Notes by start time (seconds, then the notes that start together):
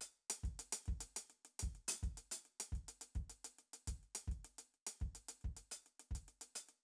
0.01 closed hi-hat
0.30 closed hi-hat
0.43 kick, closed hi-hat
0.59 closed hi-hat
0.72 closed hi-hat
0.86 kick, closed hi-hat
1.01 closed hi-hat
1.16 closed hi-hat
1.30 closed hi-hat
1.45 closed hi-hat
1.59 kick, closed hi-hat
1.75 closed hi-hat
1.88 closed hi-hat
2.03 kick, closed hi-hat
2.17 closed hi-hat
2.31 closed hi-hat
2.45 closed hi-hat
2.60 closed hi-hat
2.72 kick, closed hi-hat
2.88 closed hi-hat
3.01 closed hi-hat
3.15 kick, closed hi-hat
3.30 closed hi-hat
3.45 closed hi-hat
3.59 closed hi-hat
3.73 closed hi-hat
3.87 kick, closed hi-hat
4.03 closed hi-hat
4.15 closed hi-hat
4.27 kick
4.32 closed hi-hat
4.45 closed hi-hat
4.58 closed hi-hat
4.74 closed hi-hat
4.87 closed hi-hat
5.00 kick, closed hi-hat
5.15 closed hi-hat
5.29 closed hi-hat
5.41 kick, closed hi-hat
5.57 closed hi-hat
5.71 closed hi-hat
5.86 closed hi-hat
6.00 closed hi-hat
6.11 kick
6.15 closed hi-hat
6.28 closed hi-hat
6.41 closed hi-hat
6.55 closed hi-hat
6.69 closed hi-hat